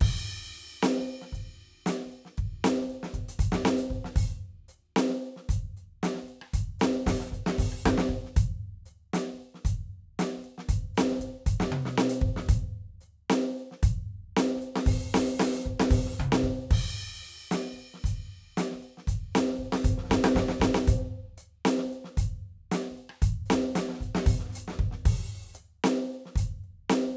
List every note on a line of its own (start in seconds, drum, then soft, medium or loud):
0.01 kick loud
0.01 crash loud
0.83 closed hi-hat loud
0.83 snare loud
0.98 kick soft
0.98 snare soft
1.22 snare soft
1.33 kick medium
1.33 closed hi-hat medium
1.87 closed hi-hat loud
1.87 snare loud
2.01 snare soft
2.06 kick soft
2.12 closed hi-hat soft
2.26 snare soft
2.38 kick medium
2.38 closed hi-hat medium
2.65 closed hi-hat loud
2.65 snare loud
2.81 snare soft
2.88 kick soft
2.88 closed hi-hat soft
3.03 snare medium
3.08 snare soft
3.14 kick medium
3.14 closed hi-hat medium
3.29 closed hi-hat loud
3.40 closed hi-hat loud
3.40 kick loud
3.52 snare loud
3.66 snare loud
3.79 closed hi-hat medium
3.91 kick medium
4.05 snare medium
4.16 open hi-hat loud
4.16 kick loud
4.69 hi-hat pedal medium
4.97 closed hi-hat loud
4.97 snare loud
5.10 snare soft
5.37 snare soft
5.49 closed hi-hat loud
5.49 kick loud
5.77 closed hi-hat soft
6.03 closed hi-hat loud
6.03 snare loud
6.15 snare soft
6.17 snare soft
6.20 kick soft
6.20 snare soft
6.29 closed hi-hat soft
6.42 cross-stick medium
6.54 closed hi-hat loud
6.54 kick loud
6.80 kick soft
6.80 snare loud
6.80 hi-hat pedal medium
7.07 open hi-hat loud
7.07 kick medium
7.07 snare loud
7.21 snare medium
7.26 snare soft
7.26 hi-hat pedal soft
7.31 closed hi-hat medium
7.31 kick medium
7.31 snare soft
7.47 snare loud
7.59 open hi-hat loud
7.59 kick loud
7.72 cross-stick soft
7.82 kick medium
7.82 snare loud
7.82 hi-hat pedal soft
7.98 snare loud
8.09 kick medium
8.25 snare soft
8.37 closed hi-hat loud
8.37 kick loud
8.86 hi-hat pedal medium
9.14 closed hi-hat loud
9.14 snare loud
9.33 kick soft
9.55 snare soft
9.65 closed hi-hat loud
9.65 kick loud
10.20 closed hi-hat loud
10.20 snare loud
10.37 kick soft
10.37 snare soft
10.45 closed hi-hat soft
10.58 snare medium
10.69 closed hi-hat loud
10.69 kick loud
10.95 closed hi-hat loud
10.95 snare loud
10.95 hi-hat pedal soft
11.11 snare soft
11.14 snare soft
11.20 kick soft
11.20 closed hi-hat medium
11.35 closed hi-hat soft
11.47 closed hi-hat loud
11.47 kick loud
11.60 snare loud
11.72 high tom loud
11.86 snare medium
11.98 snare loud
12.10 closed hi-hat loud
12.22 kick loud
12.37 snare medium
12.49 closed hi-hat loud
12.49 kick loud
13.01 hi-hat pedal soft
13.30 closed hi-hat loud
13.30 snare loud
13.58 closed hi-hat soft
13.72 snare soft
13.83 closed hi-hat loud
13.83 kick loud
14.37 closed hi-hat loud
14.37 snare loud
14.56 kick soft
14.56 snare soft
14.62 closed hi-hat medium
14.76 snare medium
14.87 open hi-hat loud
14.87 kick loud
15.15 open hi-hat loud
15.15 snare loud
15.32 kick soft
15.40 open hi-hat loud
15.40 snare loud
15.54 snare soft
15.59 snare soft
15.59 hi-hat pedal soft
15.64 closed hi-hat soft
15.64 kick medium
15.64 snare soft
15.80 snare loud
15.91 open hi-hat loud
15.91 kick loud
16.06 snare soft
16.12 snare soft
16.16 kick medium
16.16 snare soft
16.20 hi-hat pedal medium
16.20 high tom loud
16.33 snare loud
16.44 kick medium
16.67 kick soft
16.71 kick loud
16.71 hi-hat pedal medium
16.71 crash loud
17.22 hi-hat pedal soft
17.52 closed hi-hat loud
17.52 snare loud
17.73 kick soft
17.94 snare soft
18.04 closed hi-hat loud
18.04 kick medium
18.58 closed hi-hat loud
18.58 snare loud
18.72 kick soft
18.72 snare soft
18.83 closed hi-hat soft
18.98 snare soft
19.08 closed hi-hat loud
19.08 kick loud
19.33 closed hi-hat loud
19.33 snare loud
19.33 hi-hat pedal soft
19.48 snare soft
19.51 snare soft
19.54 snare soft
19.59 kick soft
19.73 snare loud
19.85 open hi-hat loud
19.85 kick loud
19.98 snare medium
20.04 snare soft
20.07 snare soft
20.09 kick medium
20.09 snare soft
20.12 snare loud
20.24 snare loud
20.36 kick medium
20.36 snare loud
20.49 snare loud
20.60 kick medium
20.60 snare loud
20.75 snare loud
20.88 closed hi-hat loud
20.88 kick loud
21.38 hi-hat pedal medium
21.38 open hi-hat medium
21.66 closed hi-hat loud
21.66 snare loud
21.78 snare medium
21.85 kick soft
21.93 closed hi-hat soft
22.05 snare medium
22.18 closed hi-hat loud
22.18 kick loud
22.72 closed hi-hat loud
22.72 snare loud
22.91 kick soft
22.98 closed hi-hat soft
23.10 cross-stick medium
23.22 open hi-hat loud
23.22 kick loud
23.46 hi-hat pedal soft
23.51 closed hi-hat loud
23.51 snare loud
23.69 kick soft
23.76 closed hi-hat loud
23.76 snare loud
23.89 snare medium
23.93 snare soft
23.97 kick medium
23.97 snare soft
24.03 closed hi-hat medium
24.15 snare loud
24.27 open hi-hat loud
24.27 kick loud
24.40 snare soft
24.44 snare soft
24.48 snare soft
24.50 snare soft
24.52 snare soft
24.52 hi-hat pedal medium
24.55 closed hi-hat loud
24.55 snare soft
24.68 snare medium
24.72 snare medium
24.79 kick loud
24.92 snare soft
25.06 open hi-hat loud
25.06 kick loud
25.06 hi-hat pedal soft
25.55 closed hi-hat medium
25.55 hi-hat pedal medium
25.84 closed hi-hat loud
25.84 snare loud
26.12 closed hi-hat soft
26.26 snare soft
26.36 closed hi-hat loud
26.36 kick loud
26.64 closed hi-hat soft
26.90 closed hi-hat loud
26.90 snare loud
27.07 kick soft